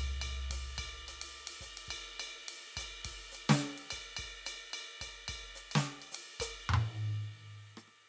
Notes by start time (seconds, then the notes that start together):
0.22 ride bell
0.50 kick, hi-hat pedal, ride
0.78 kick, ride bell
0.84 kick
1.08 hi-hat pedal, ride bell
1.22 ride
1.47 ride
1.61 kick, hi-hat pedal
1.77 ride
1.88 kick, ride bell
2.20 hi-hat pedal, ride bell
2.48 ride
2.77 kick, hi-hat pedal, ride bell
2.82 kick
2.85 kick
3.05 kick, ride
3.32 hi-hat pedal, ride bell
3.49 snare, ride bell
3.78 ride
3.91 kick, hi-hat pedal, ride bell
4.17 kick, ride bell
4.46 hi-hat pedal, ride bell
4.73 ride bell
5.01 kick, hi-hat pedal, ride bell
5.28 kick, ride bell
5.34 kick
5.55 hi-hat pedal, ride
5.71 snare, ride bell
6.02 ride bell
6.12 hi-hat pedal, ride
6.40 kick, hi-hat pedal, ride bell
6.45 kick
6.69 high tom
6.74 high tom
7.77 cross-stick
7.88 cross-stick